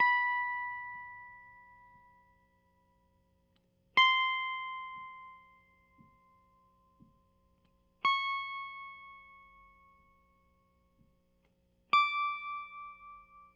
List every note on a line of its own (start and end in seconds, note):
0.00 2.42 B5
3.97 6.20 C6
8.05 10.26 C#6
11.93 13.56 D6